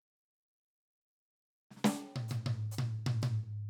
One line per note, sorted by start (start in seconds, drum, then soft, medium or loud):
1.70 snare soft
1.76 snare soft
1.84 snare loud
2.16 high tom medium
2.28 hi-hat pedal medium
2.28 high tom medium
2.46 high tom loud
2.71 hi-hat pedal medium
2.78 high tom loud
3.06 high tom loud
3.22 hi-hat pedal soft
3.22 high tom loud